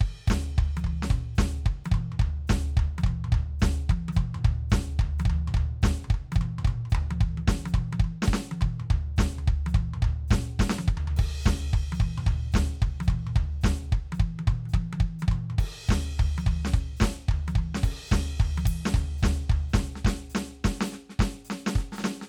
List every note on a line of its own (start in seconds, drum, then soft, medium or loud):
0.01 kick loud
0.28 kick loud
0.28 snare loud
0.28 hi-hat pedal medium
0.32 floor tom loud
0.58 kick loud
0.58 floor tom loud
0.77 hi-hat pedal soft
0.77 high tom loud
0.84 kick medium
0.84 floor tom loud
1.03 snare loud
1.10 kick loud
1.10 mid tom loud
1.35 kick loud
1.35 snare loud
1.35 floor tom loud
1.35 hi-hat pedal soft
1.66 kick loud
1.66 floor tom loud
1.85 hi-hat pedal soft
1.85 high tom loud
1.92 kick loud
1.92 mid tom loud
2.12 mid tom medium
2.20 kick loud
2.20 floor tom loud
2.48 kick loud
2.48 snare loud
2.48 floor tom loud
2.48 hi-hat pedal soft
2.77 kick loud
2.77 floor tom loud
2.98 hi-hat pedal soft
2.98 high tom loud
3.04 kick loud
3.04 mid tom loud
3.24 mid tom loud
3.32 kick loud
3.32 floor tom loud
3.59 kick loud
3.59 snare loud
3.59 floor tom loud
3.59 hi-hat pedal soft
3.90 kick loud
3.90 high tom loud
4.09 hi-hat pedal soft
4.09 high tom loud
4.17 kick loud
4.17 mid tom loud
4.35 mid tom loud
4.45 kick loud
4.45 floor tom loud
4.70 kick loud
4.70 snare loud
4.70 floor tom loud
4.70 hi-hat pedal soft
4.99 kick loud
4.99 floor tom loud
5.19 hi-hat pedal soft
5.19 high tom loud
5.25 kick loud
5.30 floor tom loud
5.48 mid tom loud
5.54 kick loud
5.54 floor tom loud
5.82 kick loud
5.82 snare loud
5.82 floor tom loud
5.82 hi-hat pedal soft
6.05 floor tom medium
6.10 kick loud
6.14 floor tom loud
6.32 kick loud
6.32 hi-hat pedal soft
6.32 high tom loud
6.41 mid tom loud
6.59 mid tom loud
6.65 kick loud
6.65 mid tom loud
6.85 mid tom medium
6.90 kick loud
6.90 hi-hat pedal soft
6.95 floor tom loud
7.11 high tom loud
7.21 kick loud
7.21 mid tom loud
7.38 high tom loud
7.48 kick loud
7.48 snare loud
7.66 hi-hat pedal soft
7.66 high tom loud
7.74 kick loud
7.74 mid tom loud
7.93 high tom loud
8.00 kick loud
8.04 mid tom medium
8.22 snare loud
8.27 kick loud
8.27 hi-hat pedal soft
8.33 snare loud
8.51 high tom loud
8.61 kick loud
8.61 mid tom loud
8.80 mid tom medium
8.90 kick loud
8.90 floor tom loud
9.17 kick loud
9.17 snare loud
9.17 floor tom loud
9.17 hi-hat pedal soft
9.39 floor tom medium
9.48 kick loud
9.48 floor tom medium
9.66 hi-hat pedal soft
9.66 high tom loud
9.75 kick loud
9.75 mid tom loud
9.94 mid tom loud
10.02 kick loud
10.02 floor tom loud
10.28 kick loud
10.28 snare loud
10.28 hi-hat pedal soft
10.32 mid tom loud
10.59 kick loud
10.59 snare loud
10.67 snare loud
10.67 hi-hat pedal soft
10.79 high tom loud
10.88 kick loud
10.97 floor tom loud
11.08 floor tom loud
11.17 kick loud
11.17 ride loud
11.43 kick loud
11.43 snare loud
11.43 hi-hat pedal soft
11.48 floor tom loud
11.73 kick loud
11.73 floor tom loud
11.92 hi-hat pedal soft
11.92 high tom loud
12.00 kick loud
12.00 mid tom loud
12.18 mid tom loud
12.27 kick loud
12.27 floor tom loud
12.52 kick loud
12.52 snare loud
12.52 hi-hat pedal soft
12.57 floor tom loud
12.82 kick loud
12.82 floor tom loud
13.00 hi-hat pedal soft
13.00 high tom loud
13.08 kick loud
13.08 mid tom loud
13.27 mid tom loud
13.36 kick loud
13.36 floor tom loud
13.61 kick loud
13.61 snare loud
13.61 hi-hat pedal soft
13.67 floor tom loud
13.92 kick loud
13.92 floor tom medium
14.12 hi-hat pedal soft
14.12 high tom loud
14.20 kick loud
14.20 mid tom medium
14.39 high tom loud
14.48 kick loud
14.48 mid tom loud
14.66 hi-hat pedal soft
14.66 high tom medium
14.74 kick loud
14.74 high tom loud
14.93 high tom loud
15.00 kick loud
15.19 hi-hat pedal soft
15.19 high tom loud
15.28 kick loud
15.28 mid tom loud
15.50 mid tom medium
15.59 kick loud
15.59 ride loud
15.87 kick loud
15.87 snare loud
15.87 hi-hat pedal soft
15.92 floor tom loud
16.19 kick loud
16.19 floor tom loud
16.38 hi-hat pedal soft
16.38 high tom loud
16.47 kick loud
16.47 floor tom loud
16.65 snare loud
16.74 kick loud
16.74 mid tom medium
16.97 snare loud
16.97 hi-hat pedal soft
17.02 kick loud
17.02 snare loud
17.29 kick loud
17.29 floor tom loud
17.48 hi-hat pedal soft
17.48 high tom loud
17.55 kick loud
17.55 floor tom medium
17.75 snare loud
17.83 kick loud
17.83 ride loud
18.07 hi-hat pedal soft
18.12 kick loud
18.12 snare loud
18.12 floor tom loud
18.40 kick loud
18.40 floor tom loud
18.57 hi-hat pedal soft
18.57 high tom loud
18.66 kick loud
18.66 ride loud
18.86 snare loud
18.94 kick loud
18.94 floor tom loud
19.18 hi-hat pedal soft
19.23 kick loud
19.23 snare loud
19.23 floor tom loud
19.50 kick loud
19.50 floor tom loud
19.69 hi-hat pedal soft
19.74 kick loud
19.74 snare loud
19.79 floor tom loud
19.96 snare medium
20.05 kick loud
20.05 snare loud
20.30 hi-hat pedal medium
20.35 snare loud
20.64 kick loud
20.64 snare loud
20.81 snare loud
20.86 hi-hat pedal medium
20.92 snare medium
21.10 snare soft
21.19 kick loud
21.19 snare loud
21.39 snare soft
21.45 hi-hat pedal medium
21.50 snare loud
21.67 snare loud
21.76 kick loud
21.76 snare soft
21.92 snare medium
21.92 hi-hat pedal medium
21.98 snare medium
22.04 snare loud
22.22 snare medium